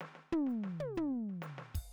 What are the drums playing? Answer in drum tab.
RD |-----------x|
HH |p--p-xp--p--|
SD |oo-oo---ooo-|
T1 |-----o------|
FT |--o---o-----|
BD |-----------o|